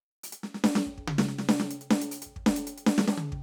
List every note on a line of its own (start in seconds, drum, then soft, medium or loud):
0.23 closed hi-hat loud
0.32 closed hi-hat loud
0.43 snare medium
0.54 snare medium
0.64 snare loud
0.75 snare loud
0.86 kick soft
0.98 kick soft
1.08 high tom loud
1.18 snare loud
1.38 snare medium
1.49 snare loud
1.60 snare medium
1.71 closed hi-hat loud
1.81 closed hi-hat medium
1.91 snare loud
2.01 closed hi-hat loud
2.11 closed hi-hat loud
2.22 kick soft
2.22 closed hi-hat loud
2.46 snare loud
2.56 closed hi-hat loud
2.67 closed hi-hat loud
2.78 closed hi-hat medium
2.86 snare loud
2.98 snare loud
3.08 snare loud
3.18 high tom loud
3.32 kick medium